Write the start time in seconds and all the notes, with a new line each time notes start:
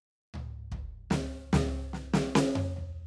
0.34 floor tom, high tom
0.72 kick, floor tom
1.10 snare, floor tom
1.53 snare, floor tom
1.93 snare
2.14 snare
2.35 snare
2.56 mid tom
2.76 floor tom